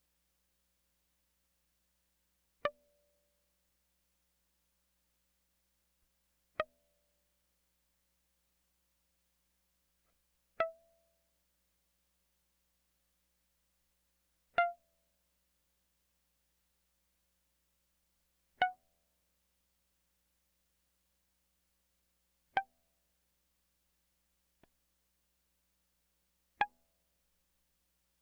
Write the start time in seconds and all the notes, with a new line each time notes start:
2.66 D5
6.61 D#5
10.61 E5
14.59 F5
18.62 F#5
22.58 G5
26.62 G#5